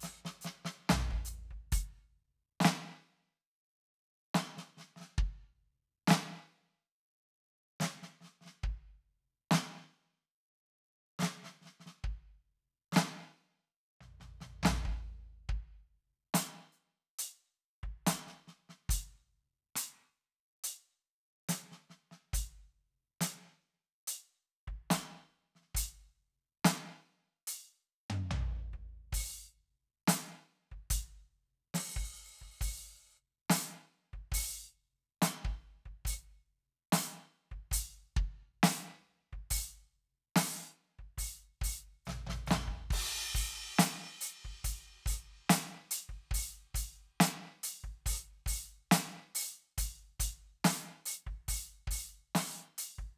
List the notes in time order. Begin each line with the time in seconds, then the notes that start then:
0.01 snare, hi-hat pedal
0.25 snare
0.42 snare, hi-hat pedal
0.65 snare
0.90 snare, floor tom
1.11 kick
1.25 hi-hat pedal
1.51 kick
1.72 open hi-hat, kick
1.93 kick
2.61 snare
2.65 snare
4.35 snare
4.58 snare
4.77 snare
4.97 snare
5.01 snare
5.18 kick
6.08 snare
6.11 snare
7.80 snare
7.82 snare
8.03 snare
8.21 snare
8.23 snare
8.41 snare
8.45 snare
8.64 kick
9.51 snare
9.54 snare
11.19 snare
11.23 snare
11.43 snare
11.45 snare
11.62 snare
11.65 snare
11.80 snare
11.86 snare
12.04 kick
12.93 snare
12.97 snare
14.01 snare, floor tom
14.20 snare, floor tom
14.41 snare, floor tom
14.63 snare, floor tom
14.85 kick
15.49 kick
16.34 closed hi-hat, snare
16.72 hi-hat pedal
17.19 closed hi-hat
17.83 kick
18.07 closed hi-hat, snare
18.27 snare
18.48 snare
18.69 snare
18.90 closed hi-hat, kick
19.09 kick
19.76 closed hi-hat, cross-stick
20.64 closed hi-hat
21.49 closed hi-hat, snare
21.57 closed hi-hat
21.72 snare
21.90 snare
22.12 snare
22.34 closed hi-hat, kick
23.21 closed hi-hat, snare
24.08 closed hi-hat
24.68 kick
24.91 closed hi-hat, snare
25.56 snare
25.61 snare
25.64 snare
25.68 snare
25.75 closed hi-hat, kick
26.65 closed hi-hat, snare
27.48 open hi-hat
28.10 high tom
28.31 floor tom
28.74 kick
29.13 open hi-hat, kick
30.08 open hi-hat, snare
30.72 kick
30.91 open hi-hat, kick
31.74 open hi-hat, snare
31.97 kick
32.42 kick
32.61 open hi-hat, kick
33.50 open hi-hat, snare
33.56 cross-stick
34.13 kick
34.32 open hi-hat, kick
35.22 open hi-hat, snare
35.45 kick
35.86 kick
36.05 open hi-hat, kick
36.93 open hi-hat, snare
37.52 kick
37.72 open hi-hat, kick
38.17 kick
38.63 open hi-hat, snare
39.33 kick
39.51 open hi-hat, kick
40.36 open hi-hat, snare
40.99 kick
41.18 open hi-hat, kick
41.62 open hi-hat, kick, ride
42.06 snare, floor tom, hi-hat pedal
42.27 snare, floor tom
42.47 floor tom, hi-hat pedal
42.51 snare
42.68 kick
42.91 kick, crash, ride
43.35 open hi-hat, kick
43.79 open hi-hat, snare
44.21 open hi-hat
44.45 kick
44.65 open hi-hat, kick
45.06 open hi-hat, kick
45.50 open hi-hat, snare
45.59 snare
45.91 open hi-hat
46.09 kick
46.31 open hi-hat, kick
46.75 open hi-hat, kick
47.21 open hi-hat, snare
47.64 open hi-hat
47.84 kick
48.06 open hi-hat, kick
48.46 open hi-hat, kick
48.92 open hi-hat, snare
49.35 open hi-hat
49.78 open hi-hat, kick
50.20 open hi-hat, kick
50.65 open hi-hat, snare
51.06 open hi-hat
51.27 kick
51.48 open hi-hat, kick
51.88 open hi-hat, kick
52.35 open hi-hat, snare
52.41 cross-stick
52.78 open hi-hat
52.99 kick